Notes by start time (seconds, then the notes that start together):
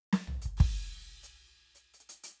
0.13 snare
0.28 floor tom
0.42 closed hi-hat, kick
0.58 kick, crash
1.24 hi-hat pedal
1.75 hi-hat pedal
1.94 closed hi-hat
2.01 closed hi-hat
2.10 closed hi-hat
2.24 closed hi-hat